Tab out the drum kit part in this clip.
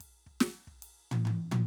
RD |x--x--x-----|
SD |---o--------|
T1 |--------oo-o|
FT |--------oo-o|
BD |o-o--o------|